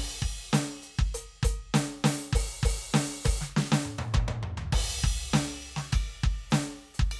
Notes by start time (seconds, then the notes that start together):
0.23 kick
0.54 closed hi-hat, snare
0.83 closed hi-hat
0.99 kick
1.15 closed hi-hat
1.44 closed hi-hat, kick
1.75 closed hi-hat, snare
2.05 open hi-hat, snare
2.33 open hi-hat, kick
2.64 open hi-hat, kick
2.95 open hi-hat, snare
3.26 open hi-hat, kick
3.42 snare, hi-hat pedal
3.57 snare
3.73 snare
3.86 high tom
3.99 high tom
4.15 kick, high tom
4.29 high tom
4.44 mid tom
4.58 floor tom
4.73 kick, crash
5.04 kick
5.34 snare, ride bell
5.63 ride
5.77 snare
5.93 kick, ride bell
6.24 kick
6.51 snare, hi-hat pedal, ride
6.95 closed hi-hat
7.00 kick
7.12 ride bell